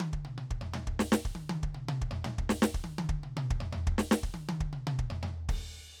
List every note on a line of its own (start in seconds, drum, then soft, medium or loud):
0.00 high tom loud
0.13 kick medium
0.25 mid tom medium
0.38 mid tom medium
0.51 kick medium
0.61 floor tom medium
0.74 floor tom loud
0.87 kick medium
0.99 snare loud
1.12 snare loud
1.25 kick medium
1.35 high tom medium
1.49 high tom loud
1.63 kick medium
1.74 mid tom medium
1.89 mid tom loud
2.01 kick medium
2.11 floor tom loud
2.24 floor tom loud
2.38 kick medium
2.49 snare loud
2.62 snare loud
2.74 kick medium
2.84 high tom medium
2.98 high tom loud
3.09 kick medium
3.23 mid tom medium
3.37 mid tom loud
3.50 kick medium
3.60 floor tom medium
3.73 floor tom loud
3.87 kick medium
3.98 snare loud
4.11 snare loud
4.23 kick medium
4.34 high tom medium
4.49 high tom loud
4.60 kick medium
4.73 mid tom medium
4.87 mid tom loud
4.99 kick medium
5.10 floor tom medium
5.23 floor tom loud
5.49 kick loud
5.49 ride medium